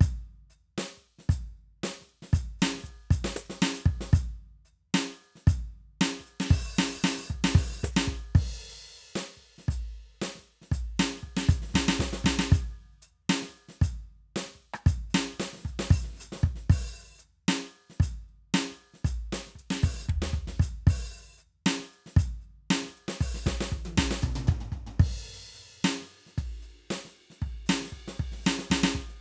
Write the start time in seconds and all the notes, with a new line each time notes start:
0.01 closed hi-hat, kick
0.50 hi-hat pedal
0.78 closed hi-hat, snare
0.98 kick
1.19 snare
1.29 closed hi-hat, kick
1.84 closed hi-hat, snare
2.01 kick, snare
2.09 closed hi-hat
2.23 snare
2.33 closed hi-hat, kick
2.59 closed hi-hat, snare, hi-hat pedal
2.75 snare
2.78 snare
2.84 kick, closed hi-hat
2.99 closed hi-hat
3.11 closed hi-hat, kick
3.25 snare
3.37 high tom
3.50 snare
3.62 snare
3.74 closed hi-hat
3.86 kick
4.01 snare
4.13 closed hi-hat, kick
4.65 hi-hat pedal
4.94 closed hi-hat, snare
5.22 closed hi-hat
5.36 snare
5.47 closed hi-hat, kick
6.01 closed hi-hat, snare
6.20 kick, snare
6.26 closed hi-hat
6.40 snare
6.51 open hi-hat, kick
6.79 open hi-hat, snare
6.96 kick
7.04 open hi-hat, snare
7.19 snare
7.23 snare, hi-hat pedal
7.28 closed hi-hat, kick, snare
7.44 snare
7.55 open hi-hat, kick
7.70 snare
7.76 snare
7.80 kick, snare
7.84 hi-hat pedal, high tom
7.97 snare
8.08 kick
8.32 kick
8.35 kick, hi-hat pedal, crash
8.86 hi-hat pedal
9.16 closed hi-hat, snare
9.37 kick
9.58 snare
9.69 closed hi-hat, kick
10.22 closed hi-hat, snare
10.36 kick, snare
10.47 closed hi-hat
10.62 snare
10.72 closed hi-hat, kick
10.97 closed hi-hat, snare, hi-hat pedal
11.12 snare
11.15 snare
11.18 snare
11.23 kick
11.37 snare
11.49 open hi-hat, kick
11.62 snare
11.68 snare
11.71 snare
11.74 kick, snare
11.76 snare
11.89 snare
12.00 kick, snare
12.13 snare
12.25 kick, snare
12.39 snare
12.52 closed hi-hat, kick
13.02 hi-hat pedal, open hi-hat
13.30 closed hi-hat, snare
13.42 snare
13.49 kick
13.57 closed hi-hat
13.69 snare
13.82 closed hi-hat, kick
14.36 closed hi-hat, snare
14.55 kick
14.62 closed hi-hat
14.74 cross-stick
14.87 open hi-hat, kick
15.10 hi-hat pedal
15.15 closed hi-hat, snare
15.34 kick
15.40 closed hi-hat, snare
15.53 snare
15.57 snare
15.62 kick, snare
15.67 closed hi-hat
15.79 snare
15.91 open hi-hat, kick
16.04 snare
16.09 snare
16.12 snare
16.15 snare
16.17 snare, hi-hat pedal
16.19 closed hi-hat, snare
16.32 snare
16.36 snare
16.44 kick
16.56 snare
16.70 open hi-hat, kick, hi-hat pedal
17.19 closed hi-hat, hi-hat pedal
17.49 closed hi-hat, snare
17.76 closed hi-hat
17.90 snare
18.00 closed hi-hat, kick
18.28 closed hi-hat
18.54 closed hi-hat, snare
18.72 kick
18.94 snare
19.05 closed hi-hat, kick
19.33 closed hi-hat, snare
19.47 snare
19.56 kick, closed hi-hat
19.71 snare
19.82 open hi-hat, kick
19.94 snare
20.01 snare
20.04 snare, hi-hat pedal
20.09 kick, mid tom
20.22 snare
20.34 kick, snare
20.48 snare
20.60 closed hi-hat, kick
20.87 open hi-hat, kick
21.39 hi-hat pedal
21.67 closed hi-hat, snare
21.80 snare
21.92 closed hi-hat
22.07 snare
22.17 closed hi-hat, kick
22.41 hi-hat pedal
22.71 closed hi-hat, snare
22.83 snare
22.86 kick, snare
22.97 closed hi-hat
23.08 snare
23.21 open hi-hat, kick
23.35 snare
23.46 kick, snare, hi-hat pedal
23.61 snare
23.70 kick, hi-hat pedal, high tom
23.85 high tom
23.98 kick, snare
24.11 snare
24.23 kick, mid tom
24.36 mid tom
24.48 kick, floor tom
24.61 floor tom
24.72 kick, floor tom
24.87 floor tom
24.96 kick
25.00 kick, crash
25.55 hi-hat pedal, ride
25.84 snare, ride
26.02 snare
26.10 hi-hat pedal, ride
26.27 snare
26.38 kick, ride
26.62 hi-hat pedal, ride
26.91 snare, ride
27.05 snare
27.16 ride
27.31 snare
27.42 kick, ride bell
27.67 snare, hi-hat pedal, ride
27.82 snare
27.86 snare
27.90 kick, hi-hat pedal
27.95 ride
28.08 snare
28.20 kick, ride
28.32 snare
28.38 snare
28.42 snare, hi-hat pedal
28.47 snare
28.59 snare
28.69 kick, snare, hi-hat pedal
28.84 snare
28.95 kick, snare
29.09 snare